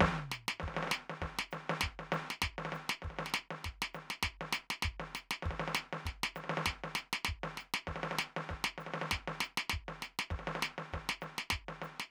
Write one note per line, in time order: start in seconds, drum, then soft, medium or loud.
0.01 kick soft
0.01 snare loud
0.07 kick soft
0.19 snare soft
0.32 snare medium
0.32 hi-hat pedal soft
0.49 snare loud
0.60 kick soft
0.60 snare soft
0.68 snare soft
0.75 snare soft
0.77 snare medium
0.83 snare medium
0.88 snare soft
0.92 snare loud
0.92 hi-hat pedal soft
1.10 snare soft
1.22 kick soft
1.22 snare medium
1.39 snare loud
1.51 snare medium
1.51 hi-hat pedal medium
1.70 snare medium
1.81 kick soft
1.81 snare loud
2.00 snare soft
2.13 snare medium
2.13 hi-hat pedal soft
2.31 snare medium
2.42 kick soft
2.42 snare loud
2.59 snare medium
2.66 snare medium
2.73 snare medium
2.73 hi-hat pedal soft
2.90 snare loud
3.03 kick soft
3.03 snare soft
3.11 snare soft
3.17 snare soft
3.19 snare medium
3.27 snare medium
3.30 snare soft
3.34 snare loud
3.34 hi-hat pedal soft
3.51 snare soft
3.65 kick soft
3.65 snare medium
3.82 snare loud
3.94 snare soft
3.94 hi-hat pedal soft
4.11 snare medium
4.23 kick soft
4.23 snare loud
4.41 snare medium
4.53 snare loud
4.53 hi-hat pedal medium
4.71 snare loud
4.83 kick soft
4.83 snare loud
5.00 snare soft
5.15 snare medium
5.15 hi-hat pedal medium
5.31 snare loud
5.43 kick soft
5.43 snare soft
5.51 kick soft
5.51 snare soft
5.60 snare medium
5.68 snare medium
5.75 snare loud
5.75 hi-hat pedal medium
5.93 snare medium
6.06 kick soft
6.06 snare medium
6.24 snare loud
6.36 snare soft
6.36 hi-hat pedal medium
6.44 snare soft
6.50 snare medium
6.58 snare medium
6.66 kick soft
6.66 snare loud
6.84 snare medium
6.96 snare loud
6.96 hi-hat pedal soft
7.13 snare loud
7.25 kick soft
7.25 snare loud
7.44 snare medium
7.58 snare medium
7.58 hi-hat pedal soft
7.74 snare loud
7.88 kick soft
7.88 snare medium
7.96 snare soft
8.04 snare medium
8.12 snare medium
8.19 snare loud
8.19 hi-hat pedal soft
8.37 snare medium
8.50 kick soft
8.50 snare soft
8.65 snare loud
8.78 snare soft
8.78 hi-hat pedal soft
8.87 snare soft
8.94 snare medium
9.02 snare medium
9.12 kick soft
9.12 snare loud
9.28 snare medium
9.41 snare loud
9.41 hi-hat pedal soft
9.58 snare loud
9.70 kick soft
9.70 snare loud
9.89 snare soft
10.03 snare medium
10.03 hi-hat pedal soft
10.19 snare loud
10.31 kick soft
10.31 snare soft
10.40 snare soft
10.48 snare medium
10.56 snare medium
10.63 snare loud
10.63 hi-hat pedal soft
10.79 snare medium
10.94 kick soft
10.94 snare soft
11.09 snare loud
11.22 snare soft
11.22 hi-hat pedal soft
11.39 snare loud
11.51 kick soft
11.51 snare loud
11.69 snare soft
11.82 snare soft
11.82 hi-hat pedal soft
12.00 snare medium